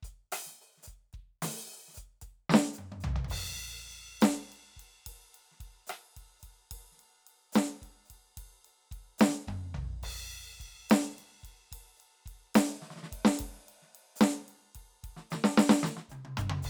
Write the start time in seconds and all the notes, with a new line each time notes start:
0.01 kick, snare
0.04 closed hi-hat, snare
0.09 kick
0.32 open hi-hat, cross-stick
0.47 snare
0.61 open hi-hat
0.78 snare
0.83 snare, hi-hat pedal
0.86 closed hi-hat, kick, snare
1.13 kick, closed hi-hat
1.20 kick
1.43 open hi-hat, snare
1.70 open hi-hat, snare
1.89 snare
1.93 snare, hi-hat pedal
1.97 closed hi-hat, kick
2.22 kick, closed hi-hat
2.50 snare
2.54 snare
2.74 hi-hat pedal
2.79 mid tom
2.92 mid tom
3.01 floor tom, hi-hat pedal
3.16 floor tom
3.25 hi-hat pedal, floor tom
3.30 kick, crash
3.37 kick
3.92 ride
4.21 snare, hi-hat pedal, ride
4.52 ride
4.75 kick, snare
4.80 ride
5.07 kick, ride
5.35 ride
5.52 snare
5.58 kick, snare, ride
5.87 cross-stick, hi-hat pedal, ride
6.17 kick, ride
6.40 kick, hi-hat pedal, ride
6.72 kick, ride
6.92 snare
6.97 snare, ride
7.27 ride
7.53 snare, hi-hat pedal, ride
7.82 kick, snare, ride
8.06 hi-hat pedal
8.11 kick, ride
8.37 kick, ride
8.65 hi-hat pedal, ride
8.92 kick, ride
9.19 snare, hi-hat pedal, ride
9.28 snare
9.48 kick, mid tom
9.75 kick, floor tom
9.82 kick
10.03 kick, crash
10.09 kick
10.58 kick, snare, ride
10.90 snare, hi-hat pedal, ride
11.14 hi-hat pedal
11.19 snare, ride
11.30 snare
11.41 kick, hi-hat pedal
11.45 ride
11.72 kick, ride
11.97 hi-hat pedal, ride
12.26 kick, ride
12.55 snare, hi-hat pedal, ride
12.82 snare
12.91 snare
12.96 snare
13.03 snare
13.12 kick, ride
13.25 snare
13.39 kick, ride
13.48 kick
13.57 snare
13.69 ride
13.83 snare
13.88 snare
13.95 ride
14.16 hi-hat pedal
14.21 snare, ride
14.49 ride
14.75 kick, ride
15.04 kick, ride
15.10 kick
15.17 snare
15.31 snare, hi-hat pedal
15.44 snare
15.58 snare, hi-hat pedal
15.70 snare
15.84 snare, hi-hat pedal
15.97 snare
16.09 kick, hi-hat pedal, high tom
16.25 high tom
16.38 kick, hi-hat pedal, mid tom
16.50 high tom
16.63 kick, hi-hat pedal, crash